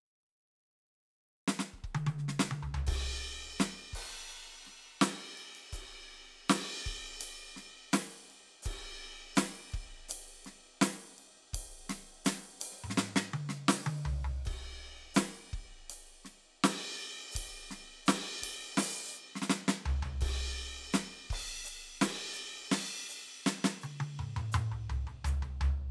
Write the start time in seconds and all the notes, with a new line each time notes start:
1.48 snare
1.59 snare
1.73 kick
1.84 kick
1.95 high tom
2.06 high tom
2.18 snare
2.39 snare
2.51 high tom
2.62 floor tom
2.74 floor tom
2.87 kick, ride
3.59 snare, hi-hat pedal
3.93 kick, crash
4.28 hi-hat pedal
4.65 snare, ride
5.01 snare, hi-hat pedal, ride
5.37 ride
5.55 ride
5.72 kick, hi-hat pedal, ride
6.15 ride
6.49 snare, hi-hat pedal, ride
6.86 kick, ride
7.20 hi-hat pedal, ride
7.56 snare, ride
7.93 snare, hi-hat pedal, ride
8.30 ride
8.62 kick, hi-hat pedal, ride
9.36 snare, hi-hat pedal, ride
9.72 kick, ride
10.09 hi-hat pedal, ride
10.45 snare, ride
10.81 snare, hi-hat pedal, ride
11.18 ride
11.53 kick, hi-hat pedal, ride
11.89 snare, ride
12.25 snare, hi-hat pedal, ride
12.60 hi-hat pedal, ride
12.72 snare
12.84 mid tom
12.90 snare
12.97 snare
13.16 snare
13.33 high tom
13.49 snare
13.68 snare, hi-hat pedal
13.86 open hi-hat, high tom
14.05 floor tom
14.24 floor tom
14.45 kick, ride
15.14 snare, hi-hat pedal, ride
15.53 kick
15.90 hi-hat pedal, ride
16.25 snare, ride
16.64 snare, hi-hat pedal, ride
16.99 ride
17.32 kick, hi-hat pedal
17.36 ride
17.71 snare, ride
18.06 snare, hi-hat pedal, ride
18.42 kick, ride
18.77 open hi-hat, snare
19.13 hi-hat pedal
19.35 snare
19.42 snare
19.50 snare
19.68 snare
19.86 floor tom
20.02 floor tom
20.21 kick, ride
20.93 snare, hi-hat pedal
21.30 kick, crash
21.65 hi-hat pedal
22.01 snare, ride
22.33 hi-hat pedal
22.71 snare, crash
23.09 hi-hat pedal
23.46 snare
23.64 snare
23.81 hi-hat pedal, high tom
24.00 high tom
24.19 mid tom
24.36 mid tom
24.52 hi-hat pedal, mid tom
24.72 floor tom
24.90 floor tom
25.07 floor tom
25.24 floor tom, hi-hat pedal
25.42 floor tom
25.61 floor tom